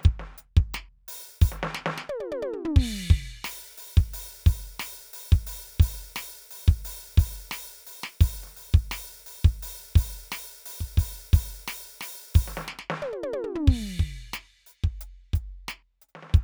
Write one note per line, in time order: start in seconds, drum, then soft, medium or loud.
0.01 snare soft
0.01 closed hi-hat medium
0.05 kick loud
0.20 snare medium
0.38 closed hi-hat loud
0.57 kick loud
0.74 closed hi-hat loud
0.74 snare loud
1.08 open hi-hat loud
1.41 open hi-hat loud
1.41 kick loud
1.49 snare medium
1.49 hi-hat pedal soft
1.63 snare loud
1.75 snare loud
1.86 snare loud
1.98 snare loud
2.09 high tom loud
2.20 high tom medium
2.32 high tom loud
2.42 high tom loud
2.53 mid tom medium
2.65 floor tom loud
2.76 kick loud
2.76 crash loud
3.10 kick loud
3.45 open hi-hat loud
3.45 snare loud
3.78 open hi-hat loud
3.97 kick loud
4.14 open hi-hat loud
4.46 open hi-hat loud
4.46 kick loud
4.80 open hi-hat loud
4.80 snare loud
5.13 open hi-hat loud
5.32 kick loud
5.47 open hi-hat loud
5.80 open hi-hat loud
5.80 kick loud
6.16 open hi-hat loud
6.16 snare loud
6.51 open hi-hat loud
6.68 kick loud
6.85 open hi-hat loud
7.18 open hi-hat loud
7.18 kick loud
7.51 open hi-hat loud
7.51 snare loud
7.87 open hi-hat loud
8.04 snare loud
8.21 open hi-hat loud
8.21 kick loud
8.44 snare soft
8.47 snare soft
8.57 open hi-hat medium
8.74 kick loud
8.91 open hi-hat loud
8.91 snare loud
9.26 open hi-hat loud
9.45 kick loud
9.63 open hi-hat loud
9.96 open hi-hat loud
9.96 kick loud
10.32 open hi-hat loud
10.32 snare loud
10.66 open hi-hat loud
10.81 kick medium
10.98 open hi-hat loud
10.98 kick loud
11.33 open hi-hat loud
11.33 kick loud
11.68 open hi-hat loud
11.68 snare loud
12.01 open hi-hat loud
12.01 snare loud
12.35 open hi-hat loud
12.35 kick loud
12.48 snare soft
12.57 snare medium
12.68 snare loud
12.79 snare medium
12.90 snare loud
13.02 high tom loud
13.13 high tom medium
13.23 high tom loud
13.44 mid tom loud
13.55 floor tom loud
13.68 kick loud
13.68 crash loud
14.00 kick medium
14.10 kick soft
14.34 closed hi-hat loud
14.34 snare loud
14.67 open hi-hat medium
14.84 kick medium
15.01 closed hi-hat loud
15.34 closed hi-hat medium
15.34 kick medium
15.68 closed hi-hat loud
15.68 snare loud
16.02 closed hi-hat medium
16.09 closed hi-hat soft
16.15 snare soft
16.23 snare soft
16.30 snare soft
16.34 kick loud
16.34 closed hi-hat medium